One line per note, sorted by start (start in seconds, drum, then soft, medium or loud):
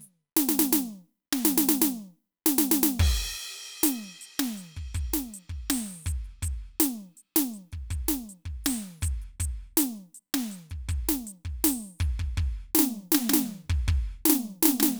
0.01 hi-hat pedal medium
0.37 snare loud
0.49 snare loud
0.59 snare loud
0.73 snare loud
1.33 snare loud
1.45 snare loud
1.58 snare loud
1.69 snare loud
1.82 snare loud
2.46 snare loud
2.58 snare loud
2.72 snare loud
2.83 snare loud
3.00 kick loud
3.00 crash loud
3.38 crash soft
3.83 closed hi-hat loud
3.83 snare loud
4.03 closed hi-hat soft
4.21 closed hi-hat medium
4.40 snare loud
4.40 closed hi-hat medium
4.58 closed hi-hat medium
4.76 kick soft
4.76 closed hi-hat soft
4.95 closed hi-hat medium
4.95 kick medium
5.14 snare medium
5.34 closed hi-hat medium
5.50 kick soft
5.70 open hi-hat loud
5.70 snare loud
6.05 closed hi-hat loud
6.05 kick medium
6.05 hi-hat pedal medium
6.25 closed hi-hat soft
6.43 closed hi-hat loud
6.43 kick medium
6.80 closed hi-hat loud
6.80 snare loud
6.99 closed hi-hat soft
7.17 closed hi-hat medium
7.36 snare loud
7.36 closed hi-hat soft
7.54 closed hi-hat medium
7.72 kick soft
7.72 closed hi-hat soft
7.91 closed hi-hat medium
7.91 kick medium
8.09 snare loud
8.29 closed hi-hat medium
8.46 kick soft
8.64 open hi-hat loud
8.64 snare loud
8.64 hi-hat pedal medium
9.02 closed hi-hat loud
9.02 kick medium
9.02 hi-hat pedal medium
9.22 closed hi-hat soft
9.40 closed hi-hat loud
9.40 kick medium
9.77 closed hi-hat loud
9.77 snare loud
9.96 closed hi-hat soft
10.15 closed hi-hat medium
10.34 snare loud
10.34 closed hi-hat soft
10.52 closed hi-hat medium
10.70 kick soft
10.70 closed hi-hat soft
10.89 closed hi-hat medium
10.89 kick medium
11.09 snare loud
11.27 closed hi-hat loud
11.45 kick medium
11.64 open hi-hat loud
11.64 snare loud
11.99 kick medium
11.99 hi-hat pedal medium
12.20 kick medium
12.27 kick soft
12.38 kick medium
12.75 snare loud
12.79 snare loud
13.12 snare loud
13.15 snare loud
13.30 snare loud
13.34 snare loud
13.66 kick soft
13.70 kick medium
13.88 kick medium
13.92 crash soft
13.92 ride soft
14.26 snare loud
14.30 snare loud
14.63 snare loud
14.66 snare loud
14.80 snare loud
14.83 snare loud